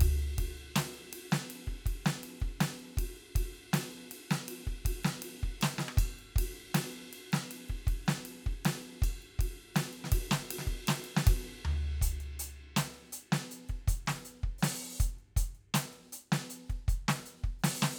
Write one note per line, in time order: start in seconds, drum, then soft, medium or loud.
0.01 kick medium
0.01 ride loud
0.19 ride soft
0.38 kick medium
0.38 ride loud
0.57 ride soft
0.76 snare loud
0.76 ride loud
0.95 ride soft
1.13 ride loud
1.32 snare loud
1.32 ride soft
1.50 ride medium
1.67 kick soft
1.67 ride soft
1.86 kick medium
1.86 ride medium
2.05 snare loud
2.05 ride soft
2.24 ride medium
2.40 kick medium
2.40 ride soft
2.61 snare loud
2.61 ride medium
2.80 ride soft
2.98 kick medium
2.98 ride loud
3.17 ride soft
3.36 kick medium
3.36 ride loud
3.55 ride soft
3.73 snare loud
3.73 ride loud
3.92 ride soft
4.10 hi-hat pedal soft
4.10 ride medium
4.31 snare loud
4.31 ride soft
4.48 ride loud
4.67 kick soft
4.67 ride soft
4.85 kick medium
4.85 ride loud
5.04 snare loud
5.04 ride soft
5.22 ride loud
5.40 kick medium
5.40 ride soft
5.62 snare loud
5.62 ride bell medium
5.79 snare loud
5.89 cross-stick medium
5.98 kick medium
5.98 ride bell loud
6.19 ride soft
6.36 kick medium
6.36 ride loud
6.55 ride soft
6.75 snare loud
6.75 ride loud
6.92 ride soft
7.11 hi-hat pedal soft
7.11 ride medium
7.33 snare loud
7.33 ride soft
7.51 ride medium
7.69 kick soft
7.69 ride soft
7.87 kick medium
7.87 ride medium
8.06 snare loud
8.06 ride soft
8.25 ride medium
8.45 kick medium
8.45 ride soft
8.65 snare loud
8.65 ride loud
8.82 ride soft
9.02 kick medium
9.02 ride bell medium
9.22 ride soft
9.39 kick medium
9.39 ride medium
9.61 ride soft
9.75 snare loud
9.75 hi-hat pedal soft
9.75 ride loud
9.93 ride soft
10.04 snare medium
10.12 kick medium
10.12 ride loud
10.31 snare loud
10.51 ride loud
10.59 snare medium
10.67 kick medium
10.67 ride soft
10.88 snare loud
10.88 ride loud
11.04 ride medium
11.17 snare loud
11.27 kick loud
11.27 ride loud
11.65 floor tom loud
12.02 closed hi-hat loud
12.02 kick medium
12.20 closed hi-hat soft
12.40 closed hi-hat loud
12.77 closed hi-hat loud
12.77 snare loud
12.94 closed hi-hat soft
13.13 closed hi-hat loud
13.32 snare loud
13.32 closed hi-hat soft
13.51 closed hi-hat medium
13.69 kick soft
13.69 closed hi-hat soft
13.88 closed hi-hat loud
13.88 kick medium
14.07 snare loud
14.07 closed hi-hat soft
14.25 closed hi-hat medium
14.44 kick medium
14.59 hi-hat pedal medium
14.63 open hi-hat loud
14.63 snare loud
14.98 closed hi-hat loud
14.98 kick medium
14.98 hi-hat pedal medium
15.19 closed hi-hat soft
15.37 closed hi-hat loud
15.37 kick medium
15.55 closed hi-hat soft
15.74 closed hi-hat loud
15.74 snare loud
15.93 closed hi-hat soft
16.13 closed hi-hat medium
16.32 snare loud
16.32 closed hi-hat soft
16.50 closed hi-hat medium
16.70 kick soft
16.70 closed hi-hat soft
16.88 closed hi-hat medium
16.88 kick medium
17.08 snare loud
17.26 closed hi-hat medium
17.44 kick medium
17.44 closed hi-hat soft
17.59 hi-hat pedal soft
17.64 open hi-hat loud
17.64 snare loud
17.82 snare loud